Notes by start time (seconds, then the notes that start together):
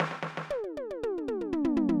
0.01 snare
0.12 snare
0.23 snare
0.38 snare
0.51 high tom
0.64 high tom
0.78 high tom
0.91 high tom
1.04 mid tom
1.18 mid tom
1.29 mid tom
1.41 mid tom
1.53 floor tom
1.65 floor tom
1.77 floor tom
1.89 floor tom